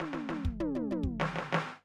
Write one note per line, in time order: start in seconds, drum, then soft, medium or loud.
0.00 snare medium
0.00 floor tom medium
0.00 hi-hat pedal soft
0.13 snare medium
0.13 floor tom medium
0.29 snare medium
0.29 floor tom medium
0.45 kick medium
0.59 floor tom loud
0.59 high tom medium
0.75 floor tom medium
0.75 high tom medium
0.90 floor tom medium
0.90 high tom medium
1.03 kick medium
1.20 snare medium
1.20 snare loud
1.36 snare medium
1.38 snare medium
1.52 snare medium
1.54 snare loud